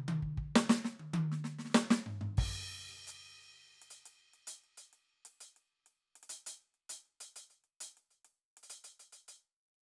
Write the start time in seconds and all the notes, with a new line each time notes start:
0.09 high tom
0.23 kick
0.38 kick
0.56 snare
0.70 snare
0.85 snare
1.00 high tom
1.14 high tom
1.32 snare
1.45 snare
1.59 snare
1.65 snare
1.71 snare
1.75 snare
1.91 snare
2.07 floor tom
2.22 floor tom
2.38 kick, crash
3.08 hi-hat pedal
3.57 closed hi-hat
3.77 closed hi-hat
3.82 closed hi-hat
3.91 closed hi-hat
4.06 closed hi-hat
4.20 closed hi-hat
4.34 closed hi-hat
4.48 closed hi-hat
4.64 closed hi-hat
4.78 closed hi-hat
4.94 closed hi-hat
5.10 closed hi-hat
5.26 closed hi-hat
5.41 closed hi-hat
5.57 closed hi-hat
5.87 closed hi-hat
6.16 closed hi-hat
6.24 closed hi-hat
6.30 closed hi-hat
6.47 closed hi-hat
6.62 closed hi-hat
6.75 closed hi-hat
6.90 closed hi-hat
7.06 closed hi-hat
7.21 closed hi-hat
7.37 closed hi-hat
7.51 closed hi-hat
7.65 closed hi-hat
7.81 closed hi-hat
7.98 closed hi-hat
8.11 closed hi-hat
8.25 closed hi-hat
8.58 closed hi-hat
8.64 closed hi-hat
8.70 closed hi-hat
8.85 closed hi-hat
9.00 closed hi-hat
9.13 closed hi-hat
9.29 closed hi-hat